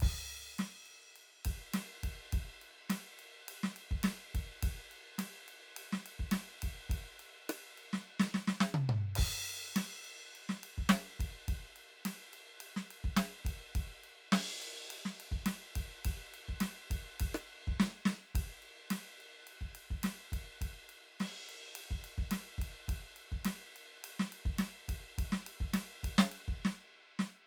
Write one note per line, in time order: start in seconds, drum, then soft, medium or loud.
0.01 kick medium
0.01 ride medium
0.01 crash medium
0.29 ride soft
0.59 snare medium
0.59 ride medium
0.86 ride soft
1.16 ride medium
1.45 kick medium
1.45 ride loud
1.74 snare medium
1.74 ride loud
2.04 kick medium
2.04 ride medium
2.33 kick medium
2.33 ride loud
2.62 ride medium
2.90 snare medium
2.90 ride loud
3.20 ride medium
3.49 ride loud
3.64 snare medium
3.77 ride medium
3.91 kick medium
4.04 snare loud
4.04 ride loud
4.35 kick medium
4.35 ride medium
4.63 kick medium
4.63 ride loud
4.92 ride medium
5.19 snare medium
5.19 ride loud
5.49 ride medium
5.77 ride loud
5.93 snare medium
6.06 ride medium
6.20 kick medium
6.32 snare loud
6.32 ride loud
6.63 kick medium
6.63 ride loud
6.90 kick medium
6.90 ride loud
7.20 ride medium
7.50 cross-stick medium
7.50 ride loud
7.78 ride medium
7.94 snare medium
8.20 snare loud
8.35 snare medium
8.48 snare loud
8.61 snare medium
8.75 high tom loud
8.90 mid tom loud
9.16 kick medium
9.16 ride loud
9.16 crash loud
9.46 ride soft
9.76 snare loud
9.76 ride loud
10.05 ride soft
10.36 ride medium
10.50 snare medium
10.64 ride medium
10.78 kick medium
10.90 snare loud
10.90 ride loud
11.20 kick medium
11.20 ride medium
11.49 kick medium
11.49 ride medium
11.77 ride medium
12.06 snare medium
12.06 ride loud
12.34 ride medium
12.61 ride loud
12.77 snare medium
12.91 ride medium
13.05 kick medium
13.17 snare loud
13.17 ride loud
13.45 kick medium
13.45 ride loud
13.75 kick medium
13.75 ride loud
14.04 ride medium
14.33 snare loud
14.33 ride loud
14.63 ride medium
14.91 ride loud
15.06 snare medium
15.21 ride medium
15.32 kick medium
15.46 snare loud
15.46 ride loud
15.76 kick medium
15.76 ride loud
16.05 kick medium
16.05 ride loud
16.34 ride medium
16.49 kick soft
16.61 snare loud
16.61 ride loud
16.91 kick medium
16.91 ride loud
17.20 kick medium
17.20 ride loud
17.35 cross-stick medium
17.68 kick medium
17.72 kick soft
17.80 snare loud
18.06 snare loud
18.35 kick medium
18.35 ride loud
18.63 ride soft
18.91 snare medium
18.91 ride loud
19.21 ride soft
19.48 ride medium
19.61 kick soft
19.76 ride medium
19.91 kick medium
20.04 snare medium
20.04 ride loud
20.33 kick medium
20.33 ride medium
20.62 kick medium
20.62 ride loud
20.90 ride medium
21.20 snare medium
21.20 ride medium
21.49 ride medium
21.76 ride loud
21.91 kick medium
22.05 ride medium
22.18 kick medium
22.32 snare medium
22.32 ride loud
22.59 kick medium
22.59 ride medium
22.89 kick medium
22.89 ride loud
23.17 ride medium
23.32 kick medium
23.45 snare medium
23.45 ride loud
23.77 ride medium
24.05 ride loud
24.20 snare loud
24.33 ride medium
24.46 kick medium
24.59 snare loud
24.59 ride loud
24.89 kick medium
24.89 ride loud
25.19 kick medium
25.19 ride loud
25.33 snare loud
25.47 ride loud
25.61 kick medium
25.74 snare loud
25.74 ride loud
26.04 kick medium
26.04 ride loud
26.19 snare loud
26.32 ride medium
26.48 kick medium
26.65 snare loud
27.20 snare loud